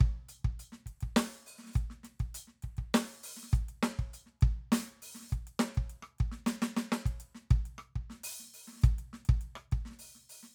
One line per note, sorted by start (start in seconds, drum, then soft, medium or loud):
0.01 kick loud
0.29 closed hi-hat medium
0.44 kick medium
0.44 snare soft
0.60 closed hi-hat medium
0.72 snare soft
0.86 kick soft
0.86 closed hi-hat soft
1.01 kick medium
1.01 closed hi-hat soft
1.17 open hi-hat medium
1.17 snare loud
1.47 open hi-hat medium
1.59 snare soft
1.64 snare soft
1.67 snare soft
1.69 snare soft
1.74 kick medium
1.74 closed hi-hat soft
1.74 hi-hat pedal soft
1.90 snare soft
2.04 snare soft
2.04 closed hi-hat soft
2.20 kick medium
2.20 closed hi-hat soft
2.35 closed hi-hat loud
2.48 snare soft
2.63 kick soft
2.63 closed hi-hat soft
2.77 kick soft
2.77 closed hi-hat soft
2.94 open hi-hat medium
2.94 snare loud
3.24 open hi-hat medium
3.37 snare soft
3.43 snare soft
3.47 snare soft
3.52 kick medium
3.52 snare soft
3.52 closed hi-hat soft
3.52 hi-hat pedal soft
3.69 closed hi-hat soft
3.83 snare loud
3.99 kick medium
3.99 closed hi-hat soft
4.14 closed hi-hat medium
4.26 snare soft
4.41 kick loud
4.41 closed hi-hat soft
4.72 open hi-hat loud
4.72 snare loud
4.81 snare soft
5.02 open hi-hat medium
5.15 snare soft
5.20 snare soft
5.23 snare soft
5.29 kick medium
5.29 hi-hat pedal soft
5.33 closed hi-hat soft
5.47 closed hi-hat soft
5.60 snare loud
5.75 kick medium
5.75 closed hi-hat soft
5.90 closed hi-hat soft
6.03 cross-stick medium
6.19 kick medium
6.19 closed hi-hat soft
6.32 snare soft
6.47 snare loud
6.47 hi-hat pedal medium
6.62 snare loud
6.77 snare loud
6.92 snare medium
7.06 kick medium
7.06 closed hi-hat soft
7.20 closed hi-hat medium
7.35 snare soft
7.51 kick loud
7.51 closed hi-hat soft
7.66 closed hi-hat soft
7.78 cross-stick medium
7.96 kick medium
8.10 snare soft
8.13 snare soft
8.24 open hi-hat loud
8.40 snare soft
8.43 snare soft
8.48 snare soft
8.54 open hi-hat medium
8.68 snare soft
8.73 snare soft
8.76 snare soft
8.79 snare soft
8.79 hi-hat pedal medium
8.84 kick loud
8.84 closed hi-hat soft
8.99 closed hi-hat soft
9.13 snare soft
9.25 kick loud
9.25 closed hi-hat soft
9.41 closed hi-hat soft
9.56 cross-stick medium
9.72 kick medium
9.72 closed hi-hat soft
9.86 snare soft
9.89 snare soft
9.91 snare soft
9.99 open hi-hat medium
10.15 snare soft
10.22 snare soft
10.30 open hi-hat medium
10.43 snare soft